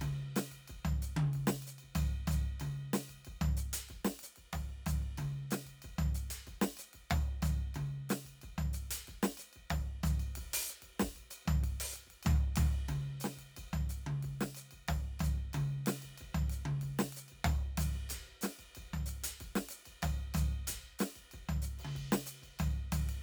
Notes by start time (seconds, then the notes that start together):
0.01 kick, mid tom, ride bell
0.36 snare, hi-hat pedal, ride bell
0.50 kick, ride
0.68 kick, ride bell
0.85 floor tom
1.02 hi-hat pedal, ride
1.16 kick, mid tom
1.33 kick, ride
1.47 snare
1.62 ride bell
1.67 hi-hat pedal
1.78 ride bell
1.83 kick
1.95 floor tom, ride bell
2.00 kick
2.27 floor tom, hi-hat pedal, ride bell
2.45 kick
2.60 kick, mid tom, ride bell
2.93 snare, hi-hat pedal, ride bell
3.08 kick, ride bell
3.25 kick, ride bell
3.41 floor tom
3.57 hi-hat pedal, ride
3.72 kick, closed hi-hat
3.89 kick, ride
4.05 snare
4.19 hi-hat pedal, ride
4.36 kick, ride
4.53 kick, ride, floor tom
4.86 floor tom, hi-hat pedal, ride
5.01 kick
5.17 kick, mid tom, ride bell
5.51 snare, hi-hat pedal, ride bell
5.64 kick, ride
5.82 kick, ride bell
5.98 floor tom
6.14 hi-hat pedal, ride
6.29 kick, closed hi-hat
6.47 kick, ride bell
6.61 snare
6.77 hi-hat pedal, ride bell
6.93 kick, ride
7.10 kick, ride bell, floor tom
7.42 floor tom, hi-hat pedal, ride bell
7.58 kick
7.74 kick, mid tom, ride bell
8.09 snare, hi-hat pedal, ride
8.24 kick, ride bell
8.42 kick, ride bell
8.58 floor tom
8.73 hi-hat pedal, ride
8.90 kick, closed hi-hat
9.07 kick, ride
9.23 snare
9.37 hi-hat pedal, ride bell
9.53 kick, ride bell
9.70 kick, ride, floor tom
10.03 floor tom, hi-hat pedal, ride bell
10.19 kick, ride bell
10.35 kick, ride
10.53 closed hi-hat
10.69 hi-hat pedal, ride
10.82 kick, ride
10.99 kick, snare
11.16 ride bell
11.30 hi-hat pedal, ride bell
11.45 kick, floor tom
11.63 kick, ride
11.80 closed hi-hat
11.92 hi-hat pedal, ride
12.07 kick, ride
12.23 kick, floor tom, ride bell
12.56 floor tom, hi-hat pedal, ride
12.69 kick
12.88 kick, mid tom, ride bell
13.20 hi-hat pedal, ride bell
13.24 snare
13.36 kick, ride
13.56 kick, ride bell
13.73 floor tom
13.89 hi-hat pedal, ride
14.06 kick, mid tom
14.23 kick, ride
14.41 snare
14.55 hi-hat pedal, ride bell
14.71 kick, ride bell
14.88 kick, ride, floor tom
15.19 floor tom, ride bell
15.24 hi-hat pedal
15.37 kick
15.53 kick, mid tom, ride bell
15.86 snare, hi-hat pedal, ride
16.02 kick, ride bell
16.18 kick, ride bell
16.34 floor tom
16.50 hi-hat pedal, ride
16.65 kick, mid tom
16.81 kick, ride
16.99 snare
17.12 hi-hat pedal, ride
17.28 kick, ride bell
17.44 ride bell, floor tom
17.50 kick
17.77 floor tom, hi-hat pedal, ride
17.95 kick
18.09 kick, closed hi-hat, ride bell
18.41 snare, hi-hat pedal, ride
18.58 kick, ride bell
18.75 kick, ride bell
18.93 floor tom
19.06 hi-hat pedal, ride
19.23 kick, closed hi-hat
19.40 kick, ride
19.55 snare
19.69 hi-hat pedal, ride
19.85 kick, ride bell
20.02 kick, ride bell, floor tom
20.34 floor tom, hi-hat pedal, ride bell
20.52 kick
20.67 kick, closed hi-hat, ride bell
20.99 snare, hi-hat pedal, ride
21.15 kick, ride bell
21.31 kick, ride bell
21.49 floor tom
21.62 hi-hat pedal, ride
21.78 kick, ride
21.85 mid tom
21.95 kick, ride
22.12 snare
22.26 hi-hat pedal, ride
22.42 kick, ride bell
22.59 kick, floor tom, ride bell
22.92 floor tom, hi-hat pedal, ride
23.06 kick, ride